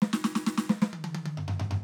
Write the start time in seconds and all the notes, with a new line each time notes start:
0.02 snare
0.14 snare
0.25 snare
0.36 snare
0.47 snare
0.58 snare
0.70 snare
0.82 snare
0.94 high tom
1.05 high tom
1.15 high tom
1.26 high tom
1.38 floor tom
1.49 floor tom
1.60 floor tom
1.71 floor tom